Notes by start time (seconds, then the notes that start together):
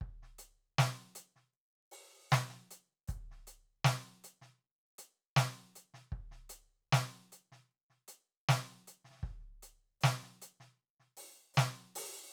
0.01 kick
0.22 snare
0.38 closed hi-hat
0.78 snare
0.84 snare
1.02 snare
1.08 snare
1.15 closed hi-hat
1.36 snare
1.54 closed hi-hat
1.91 open hi-hat
2.31 snare, hi-hat pedal
2.49 snare
2.56 snare
2.71 closed hi-hat
3.08 kick, hi-hat pedal
3.12 closed hi-hat
3.31 snare
3.35 snare
3.37 snare
3.41 snare
3.47 closed hi-hat
3.84 snare
4.24 closed hi-hat
4.42 snare
4.98 closed hi-hat
5.36 snare
5.75 closed hi-hat
5.94 snare
6.12 kick, closed hi-hat
6.31 snare
6.49 closed hi-hat
6.92 snare
7.32 closed hi-hat
7.52 snare
7.71 closed hi-hat
7.90 snare
8.08 closed hi-hat
8.49 snare
8.55 snare
8.71 snare
8.87 closed hi-hat
9.04 snare
9.11 snare
9.15 snare
9.19 kick, snare
9.23 snare
9.27 snare
9.31 snare
9.40 snare
9.62 closed hi-hat
10.01 snare, hi-hat pedal
10.23 snare
10.28 snare
10.42 closed hi-hat
10.60 snare
11.00 snare
11.17 open hi-hat
11.54 snare, hi-hat pedal
11.82 snare
11.95 open hi-hat